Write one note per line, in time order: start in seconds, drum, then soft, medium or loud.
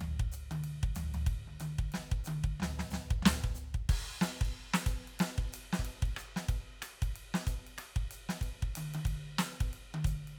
0.01 floor tom loud
0.01 ride medium
0.20 kick medium
0.32 hi-hat pedal medium
0.32 ride medium
0.51 high tom loud
0.51 ride medium
0.64 ride medium
0.83 kick medium
0.95 floor tom loud
0.95 hi-hat pedal medium
0.95 ride medium
1.14 floor tom medium
1.14 ride medium
1.27 kick medium
1.27 ride medium
1.48 high tom soft
1.60 hi-hat pedal medium
1.60 high tom medium
1.60 ride medium
1.79 kick medium
1.92 snare medium
1.92 ride medium
2.12 kick medium
2.24 hi-hat pedal medium
2.24 high tom loud
2.24 ride medium
2.44 kick medium
2.60 snare medium
2.60 floor tom medium
2.79 snare medium
2.79 floor tom medium
2.91 snare medium
2.91 floor tom medium
2.91 hi-hat pedal medium
3.11 kick medium
3.23 snare loud
3.23 floor tom loud
3.44 kick medium
3.55 hi-hat pedal medium
3.74 kick soft
3.89 kick medium
3.89 crash medium
4.21 snare loud
4.21 hi-hat pedal medium
4.21 ride soft
4.41 kick medium
4.45 ride medium
4.57 ride soft
4.74 snare loud
4.86 kick medium
4.86 hi-hat pedal medium
4.86 ride medium
5.08 ride soft
5.20 snare loud
5.20 ride medium
5.38 kick medium
5.53 hi-hat pedal medium
5.53 ride loud
5.73 snare medium
5.79 kick soft
5.85 ride medium
6.02 kick medium
6.02 ride soft
6.17 cross-stick medium
6.17 hi-hat pedal medium
6.17 ride soft
6.36 snare medium
6.49 kick medium
6.49 ride medium
6.82 cross-stick medium
6.82 hi-hat pedal medium
6.82 ride medium
7.02 kick medium
7.02 ride medium
7.16 ride medium
7.34 snare medium
7.47 kick medium
7.47 hi-hat pedal medium
7.47 ride medium
7.67 ride medium
7.78 cross-stick medium
7.78 ride medium
7.96 kick medium
8.11 hi-hat pedal medium
8.11 ride medium
8.29 snare medium
8.29 ride medium
8.41 kick soft
8.41 ride medium
8.63 kick medium
8.76 hi-hat pedal medium
8.76 high tom medium
8.76 ride loud
8.94 high tom loud
8.94 ride medium
9.05 kick medium
9.05 ride medium
9.39 snare loud
9.39 hi-hat pedal medium
9.39 ride medium
9.61 kick medium
9.61 ride medium
9.73 ride medium
9.94 high tom loud
10.05 kick medium
10.05 hi-hat pedal medium
10.05 ride medium
10.28 ride soft